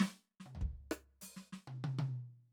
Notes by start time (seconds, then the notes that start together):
0.00 snare
0.40 snare
0.46 high tom
0.55 floor tom
0.61 kick
0.91 cross-stick
1.21 snare, hi-hat pedal
1.37 snare
1.53 snare
1.67 high tom
1.84 high tom
1.99 closed hi-hat, high tom